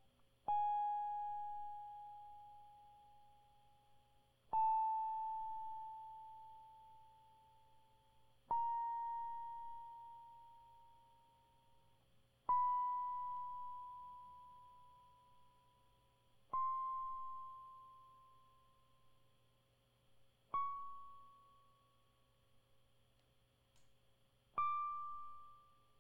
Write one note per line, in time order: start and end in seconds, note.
0.49 3.49 G#5
4.54 7.62 A5
8.52 11.70 A#5
12.50 15.76 B5
16.54 18.91 C6
20.55 21.93 C#6
24.59 26.00 D6